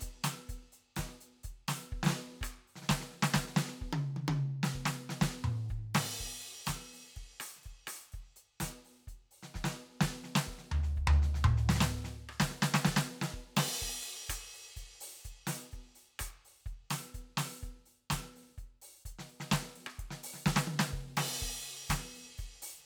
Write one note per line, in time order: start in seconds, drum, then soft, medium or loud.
0.01 closed hi-hat medium
0.01 kick soft
0.24 open hi-hat loud
0.24 snare loud
0.49 closed hi-hat soft
0.49 kick soft
0.72 open hi-hat soft
0.96 open hi-hat medium
0.96 kick soft
0.96 snare medium
1.08 snare soft
1.21 open hi-hat soft
1.28 snare soft
1.35 snare soft
1.44 closed hi-hat soft
1.44 kick soft
1.68 open hi-hat medium
1.68 snare loud
1.79 snare soft
1.92 kick soft
2.03 snare loud
2.06 snare loud
2.09 snare medium
2.41 closed hi-hat medium
2.41 kick soft
2.41 cross-stick medium
2.41 hi-hat pedal soft
2.67 open hi-hat soft
2.76 snare soft
2.82 snare soft
2.89 kick soft
2.89 snare loud
3.01 snare medium
3.11 snare soft
3.23 snare loud
3.34 kick soft
3.34 snare loud
3.34 hi-hat pedal soft
3.48 snare soft
3.56 snare loud
3.68 snare soft
3.82 kick soft
3.93 high tom loud
4.16 high tom medium
4.28 kick soft
4.28 high tom loud
4.37 high tom soft
4.63 snare loud
4.72 kick soft
4.72 snare soft
4.72 hi-hat pedal soft
4.86 snare loud
5.09 snare medium
5.21 kick soft
5.21 snare loud
5.21 hi-hat pedal soft
5.44 mid tom loud
5.69 kick soft
5.69 hi-hat pedal soft
5.76 kick soft
5.95 snare loud
5.95 crash medium
6.11 snare soft
6.17 open hi-hat soft
6.17 kick soft
6.17 snare soft
6.26 snare soft
6.29 snare soft
6.31 snare soft
6.42 open hi-hat soft
6.66 open hi-hat loud
6.66 kick soft
6.66 snare medium
6.93 open hi-hat soft
7.00 snare soft
7.06 snare soft
7.16 kick soft
7.16 closed hi-hat soft
7.40 open hi-hat medium
7.40 cross-stick medium
7.56 snare soft
7.63 kick soft
7.63 open hi-hat soft
7.87 open hi-hat medium
7.87 cross-stick medium
8.12 kick soft
8.12 open hi-hat soft
8.23 snare soft
8.36 open hi-hat soft
8.60 open hi-hat loud
8.60 kick soft
8.60 snare medium
8.85 open hi-hat soft
8.96 snare soft
9.08 closed hi-hat soft
9.08 kick soft
9.31 open hi-hat soft
9.43 snare soft
9.54 kick soft
9.54 snare medium
9.77 cross-stick soft
10.01 kick soft
10.01 snare loud
10.01 hi-hat pedal soft
10.13 snare soft
10.24 snare soft
10.35 snare loud
10.47 kick soft
10.47 snare soft
10.47 hi-hat pedal soft
10.58 snare soft
10.72 floor tom loud
10.83 snare soft
10.96 kick soft
10.96 hi-hat pedal soft
11.07 floor tom loud
11.14 floor tom soft
11.22 snare soft
11.35 snare medium
11.44 kick soft
11.44 hi-hat pedal soft
11.44 mid tom loud
11.57 snare soft
11.69 snare loud
11.75 snare medium
11.81 snare loud
11.92 kick soft
11.96 snare soft
12.04 snare medium
12.29 cross-stick medium
12.40 kick soft
12.40 snare loud
12.40 hi-hat pedal soft
12.50 snare soft
12.62 snare loud
12.74 snare loud
12.85 kick soft
12.85 snare loud
12.85 hi-hat pedal soft
12.97 snare loud
13.22 snare loud
13.34 kick soft
13.57 snare loud
13.57 crash loud
13.76 open hi-hat soft
13.76 cross-stick soft
13.82 kick soft
14.03 open hi-hat medium
14.29 closed hi-hat loud
14.29 kick soft
14.29 cross-stick medium
14.53 open hi-hat soft
14.77 closed hi-hat soft
14.77 kick soft
15.01 open hi-hat medium
15.25 closed hi-hat soft
15.25 kick soft
15.47 open hi-hat loud
15.47 snare medium
15.61 snare soft
15.72 closed hi-hat soft
15.72 kick soft
15.80 snare soft
15.84 snare soft
15.89 snare soft
15.95 open hi-hat soft
16.19 open hi-hat loud
16.19 kick soft
16.19 cross-stick medium
16.45 open hi-hat soft
16.66 closed hi-hat soft
16.66 kick soft
16.90 open hi-hat medium
16.90 snare medium
17.07 snare soft
17.14 closed hi-hat soft
17.14 kick soft
17.37 open hi-hat medium
17.37 snare loud
17.61 open hi-hat soft
17.61 kick soft
17.61 snare soft
17.69 snare soft
17.86 open hi-hat soft
18.10 open hi-hat medium
18.10 kick soft
18.10 snare loud
18.22 snare soft
18.36 open hi-hat soft
18.43 snare soft
18.48 snare soft
18.52 snare soft
18.58 closed hi-hat soft
18.58 kick soft
18.82 open hi-hat medium
19.05 closed hi-hat medium
19.05 kick soft
19.19 snare medium
19.30 open hi-hat soft
19.40 snare medium
19.51 kick soft
19.51 snare loud
19.63 snare soft
19.76 open hi-hat soft
19.87 cross-stick medium
19.97 kick soft
19.97 closed hi-hat soft
19.97 hi-hat pedal soft
20.11 snare medium
20.24 open hi-hat medium
20.34 snare soft
20.46 kick soft
20.46 snare loud
20.56 snare loud
20.67 high tom medium
20.79 snare loud
20.93 kick soft
21.17 snare loud
21.17 crash loud
21.27 snare soft
21.37 open hi-hat soft
21.37 cross-stick soft
21.42 kick soft
21.62 open hi-hat soft
21.90 closed hi-hat medium
21.90 kick soft
21.90 snare loud
22.15 open hi-hat soft
22.38 open hi-hat soft
22.38 kick soft
22.62 open hi-hat medium
22.78 snare soft